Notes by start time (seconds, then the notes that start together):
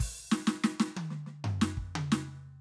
0.00 open hi-hat, kick
0.32 snare
0.48 snare
0.64 snare
0.80 snare
0.97 high tom
1.11 snare
1.27 snare
1.45 floor tom
1.62 snare
1.78 kick
1.96 high tom
2.12 snare